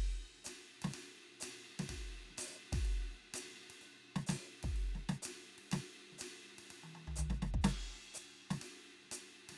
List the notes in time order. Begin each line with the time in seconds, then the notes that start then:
0.44 hi-hat pedal, ride
0.82 snare, ride
0.90 hi-hat pedal, ride
1.40 hi-hat pedal, ride
1.79 snare, ride
1.89 kick, hi-hat pedal, ride
2.30 snare
2.38 hi-hat pedal, ride
2.72 kick, ride
2.83 hi-hat pedal, ride
3.34 hi-hat pedal, ride
3.70 ride
3.81 hi-hat pedal, ride
4.16 snare
4.26 snare, hi-hat pedal, ride
4.47 hi-hat pedal
4.63 kick, ride
4.76 ride
4.95 snare
5.09 snare
5.22 hi-hat pedal, ride
5.43 hi-hat pedal
5.58 ride
5.67 hi-hat pedal
5.71 snare, ride
6.12 snare
6.18 hi-hat pedal, ride
6.58 ride
6.65 hi-hat pedal
6.70 ride
6.83 high tom
6.95 high tom
7.07 floor tom
7.16 floor tom, hi-hat pedal
7.30 snare
7.42 snare
7.54 kick
7.61 snare, hi-hat pedal, ride
8.14 hi-hat pedal, ride
8.50 snare, ride
8.61 hi-hat pedal, ride
9.03 snare
9.11 hi-hat pedal, ride
9.49 snare, hi-hat pedal, ride